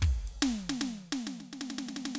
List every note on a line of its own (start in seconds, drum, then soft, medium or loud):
0.02 kick medium
0.02 ride loud
0.28 ride medium
0.42 snare loud
0.70 snare medium
0.81 snare medium
1.13 snare medium
1.27 snare medium
1.40 snare soft
1.53 snare medium
1.61 snare medium
1.70 snare medium
1.79 snare medium
1.89 snare medium
1.96 snare medium
2.06 snare medium
2.15 snare medium